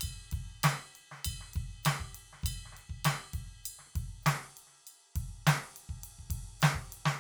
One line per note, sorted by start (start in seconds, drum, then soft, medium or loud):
0.01 kick soft
0.01 snare soft
0.01 hi-hat pedal soft
0.01 ride bell loud
0.14 kick soft
0.32 kick soft
0.32 ride medium
0.39 kick soft
0.64 snare loud
0.64 hi-hat pedal medium
0.64 ride bell loud
0.75 snare soft
0.96 ride soft
1.12 snare soft
1.25 kick soft
1.25 hi-hat pedal soft
1.25 ride bell loud
1.33 kick soft
1.41 snare soft
1.54 kick medium
1.54 ride medium
1.64 kick soft
1.83 snare loud
1.83 hi-hat pedal medium
1.83 ride bell loud
1.98 kick soft
1.98 snare soft
2.11 hi-hat pedal soft
2.15 ride medium
2.33 snare soft
2.42 kick medium
2.42 hi-hat pedal soft
2.46 ride bell loud
2.51 kick soft
2.66 snare soft
2.73 snare soft
2.77 ride soft
2.90 kick soft
3.05 snare loud
3.05 hi-hat pedal medium
3.05 ride bell loud
3.15 snare soft
3.34 kick soft
3.34 ride medium
3.40 kick soft
3.45 snare soft
3.64 hi-hat pedal soft
3.64 ride bell medium
3.79 snare soft
3.87 cross-stick soft
3.94 kick medium
3.94 snare soft
3.94 ride medium
4.03 kick soft
4.07 kick soft
4.23 snare loud
4.23 hi-hat pedal medium
4.27 ride loud
4.37 snare soft
4.57 ride medium
4.67 snare soft
4.71 snare soft
4.87 ride bell soft
5.16 kick medium
5.16 ride medium
5.29 kick soft
5.47 snare loud
5.47 hi-hat pedal medium
5.47 ride loud
5.56 snare soft
5.77 ride medium
5.90 kick soft
6.04 ride medium
6.19 kick soft
6.19 cross-stick soft
6.30 kick soft
6.30 ride medium
6.54 kick soft
6.60 snare loud
6.60 hi-hat pedal medium
6.60 ride loud
6.75 kick soft
6.93 ride medium
7.06 snare loud